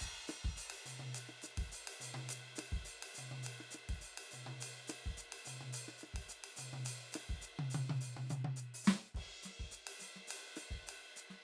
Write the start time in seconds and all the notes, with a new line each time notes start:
0.01 kick, hi-hat pedal, ride
0.28 cross-stick, hi-hat pedal
0.45 kick
0.57 hi-hat pedal
0.70 ride
0.86 hi-hat pedal, high tom
1.00 high tom
1.15 hi-hat pedal, ride
1.29 cross-stick
1.42 cross-stick, hi-hat pedal, ride
1.58 kick, ride
1.72 hi-hat pedal
1.88 ride
2.01 hi-hat pedal, high tom
2.15 high tom
2.29 hi-hat pedal, ride
2.56 cross-stick, hi-hat pedal, ride
2.72 kick
2.85 hi-hat pedal
3.03 ride
3.15 hi-hat pedal, high tom
3.32 high tom
3.43 hi-hat pedal, ride
3.60 cross-stick
3.71 cross-stick, hi-hat pedal
3.77 ride
3.89 kick, ride
4.02 hi-hat pedal
4.18 ride
4.31 hi-hat pedal, high tom
4.47 high tom
4.61 hi-hat pedal, ride
4.88 cross-stick, hi-hat pedal, ride
5.06 kick
5.17 hi-hat pedal
5.33 ride
5.45 hi-hat pedal, high tom
5.61 high tom
5.73 hi-hat pedal, ride
5.88 cross-stick
5.98 hi-hat pedal, ride
6.03 cross-stick
6.14 kick, ride
6.29 hi-hat pedal
6.44 ride
6.57 hi-hat pedal, high tom
6.73 high tom
6.85 hi-hat pedal, ride
7.13 cross-stick, hi-hat pedal, ride
7.30 kick
7.42 hi-hat pedal
7.59 high tom
7.71 hi-hat pedal
7.75 high tom
7.90 high tom
8.01 hi-hat pedal
8.17 high tom
8.30 hi-hat pedal, high tom
8.45 high tom
8.57 hi-hat pedal
8.74 open hi-hat
8.84 snare, hi-hat pedal
9.15 kick, ride
9.43 snare, hi-hat pedal
9.60 kick
9.72 hi-hat pedal
9.87 ride
10.00 snare, hi-hat pedal
10.16 snare
10.28 hi-hat pedal, ride
10.56 cross-stick, hi-hat pedal
10.71 kick, snare
10.87 hi-hat pedal, ride
11.17 hi-hat pedal
11.30 snare